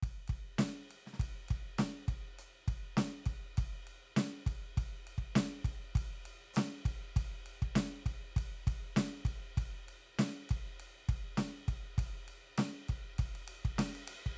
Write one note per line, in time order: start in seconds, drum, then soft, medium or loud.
0.00 kick soft
0.00 ride medium
0.28 kick soft
0.28 ride medium
0.58 snare loud
0.58 hi-hat pedal soft
0.58 ride medium
0.89 hi-hat pedal soft
0.89 ride medium
1.06 snare soft
1.13 snare soft
1.20 kick medium
1.20 snare soft
1.20 ride medium
1.49 kick medium
1.49 ride medium
1.79 snare medium
1.79 ride medium
2.08 kick medium
2.08 ride medium
2.39 hi-hat pedal medium
2.39 ride medium
2.68 kick medium
2.68 ride medium
2.97 snare loud
2.97 hi-hat pedal medium
2.97 ride medium
3.26 kick medium
3.26 ride medium
3.57 kick medium
3.57 ride medium
3.87 ride medium
4.16 snare loud
4.16 ride medium
4.46 kick medium
4.46 ride medium
4.77 kick medium
4.77 ride medium
5.07 ride medium
5.18 kick soft
5.35 snare loud
5.35 ride medium
5.65 kick medium
5.65 ride medium
5.95 kick medium
5.95 ride medium
6.25 ride medium
6.54 snare loud
6.54 hi-hat pedal medium
6.54 ride medium
6.85 kick medium
6.85 ride medium
7.16 kick medium
7.16 ride medium
7.46 ride medium
7.62 kick medium
7.75 snare loud
7.75 ride medium
8.06 kick medium
8.06 ride medium
8.36 kick medium
8.36 ride medium
8.67 kick medium
8.67 ride medium
8.96 snare loud
8.96 ride medium
9.25 kick medium
9.25 ride medium
9.57 kick medium
9.57 ride medium
9.88 ride medium
10.19 snare loud
10.19 ride medium
10.49 kick medium
10.49 ride medium
10.80 ride medium
11.09 kick medium
11.09 ride medium
11.37 snare medium
11.37 ride medium
11.68 kick medium
11.68 ride medium
11.98 kick medium
11.98 ride medium
12.28 ride medium
12.58 snare medium
12.58 ride medium
12.89 kick medium
12.89 ride medium
13.19 kick medium
13.19 ride medium
13.35 ride medium
13.48 ride medium
13.65 kick medium
13.78 snare medium
13.78 ride loud
13.95 ride medium
14.08 ride loud
14.26 kick soft